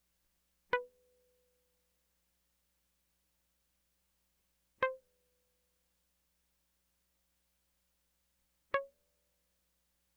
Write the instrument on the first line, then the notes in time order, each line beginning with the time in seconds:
electric guitar
0.73 B4
4.82 C5
8.74 C#5